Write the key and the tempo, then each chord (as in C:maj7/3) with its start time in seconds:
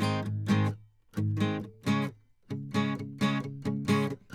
F minor, 88 BPM
0.00 G#:maj
1.82 C#:(1,5)